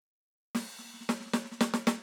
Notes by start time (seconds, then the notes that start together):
0.55 snare, crash
0.79 snare
0.84 snare
0.89 snare
0.94 snare
1.00 snare
1.09 snare
1.20 snare
1.26 snare
1.33 snare
1.44 snare
1.51 snare
1.58 snare
1.61 snare
1.74 snare
1.87 snare